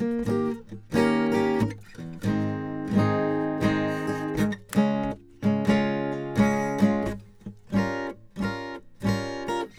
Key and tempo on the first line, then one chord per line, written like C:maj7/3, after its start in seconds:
F minor, 88 BPM
0.00 D#:7
2.27 G#:maj
5.00 C#:maj
7.72 G:hdim7(13,11)/6